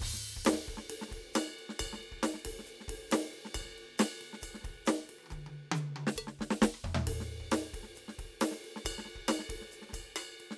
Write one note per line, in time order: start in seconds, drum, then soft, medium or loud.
0.01 kick medium
0.01 hi-hat pedal medium
0.01 crash loud
0.14 snare soft
0.37 kick soft
0.46 snare loud
0.46 hi-hat pedal medium
0.46 ride loud
0.54 snare soft
0.68 kick soft
0.68 ride soft
0.75 kick soft
0.75 snare soft
0.90 hi-hat pedal soft
0.90 ride loud
1.02 snare soft
1.09 kick soft
1.09 snare soft
1.14 ride medium
1.18 kick soft
1.34 snare medium
1.34 hi-hat pedal medium
1.34 ride bell loud
1.60 ride soft
1.70 snare soft
1.80 kick soft
1.80 hi-hat pedal medium
1.80 ride bell loud
1.88 kick soft
1.94 snare soft
1.99 snare soft
2.04 ride soft
2.12 kick soft
2.24 snare medium
2.24 hi-hat pedal medium
2.24 ride bell medium
2.35 snare soft
2.46 kick soft
2.46 ride loud
2.52 kick soft
2.60 snare soft
2.66 hi-hat pedal soft
2.66 ride soft
2.81 snare soft
2.89 kick soft
2.89 ride loud
2.95 kick soft
3.11 snare loud
3.11 hi-hat pedal medium
3.11 ride loud
3.34 ride soft
3.46 snare soft
3.55 kick soft
3.55 hi-hat pedal medium
3.55 ride bell loud
3.62 kick soft
3.62 snare soft
3.68 snare soft
3.71 snare soft
3.79 ride soft
3.99 snare loud
3.99 hi-hat pedal medium
3.99 ride bell loud
4.22 ride medium
4.34 snare soft
4.42 kick soft
4.42 hi-hat pedal medium
4.42 ride bell medium
4.55 snare soft
4.62 kick soft
4.62 snare soft
4.62 ride medium
4.71 kick soft
4.86 snare loud
4.86 hi-hat pedal medium
4.86 ride bell medium
5.10 ride medium
5.19 cross-stick soft
5.24 open hi-hat soft
5.24 high tom soft
5.27 high tom soft
5.31 kick soft
5.31 hi-hat pedal soft
5.31 high tom medium
5.47 high tom medium
5.72 hi-hat pedal medium
5.72 high tom loud
5.97 high tom medium
6.08 snare medium
6.17 kick soft
6.17 hi-hat pedal medium
6.17 percussion loud
6.28 snare soft
6.40 kick soft
6.40 snare medium
6.51 snare medium
6.62 kick soft
6.62 snare loud
6.62 hi-hat pedal medium
6.68 kick soft
6.75 cross-stick soft
6.85 kick soft
6.85 floor tom medium
6.93 kick soft
6.93 floor tom loud
7.08 kick soft
7.08 hi-hat pedal soft
7.08 ride loud
7.18 kick soft
7.18 snare soft
7.32 ride soft
7.41 kick soft
7.45 kick soft
7.52 snare loud
7.52 hi-hat pedal medium
7.52 ride loud
7.74 kick soft
7.74 ride medium
7.80 kick soft
7.80 snare soft
7.96 hi-hat pedal soft
7.96 ride medium
8.09 snare soft
8.19 kick soft
8.19 ride medium
8.25 kick soft
8.41 snare loud
8.41 hi-hat pedal medium
8.41 ride loud
8.52 snare soft
8.65 ride medium
8.77 snare soft
8.86 kick soft
8.86 hi-hat pedal medium
8.86 ride bell loud
8.92 kick soft
8.99 snare soft
9.06 snare soft
9.11 ride soft
9.16 kick soft
9.21 kick soft
9.29 snare loud
9.29 hi-hat pedal medium
9.29 ride bell loud
9.40 snare soft
9.50 kick soft
9.50 ride medium
9.56 kick soft
9.62 snare soft
9.72 hi-hat pedal medium
9.72 ride soft
9.83 snare soft
9.90 kick soft
9.90 snare soft
9.95 ride bell medium
10.00 kick soft
10.17 cross-stick medium
10.17 hi-hat pedal medium
10.17 ride bell loud
10.41 ride medium
10.52 snare soft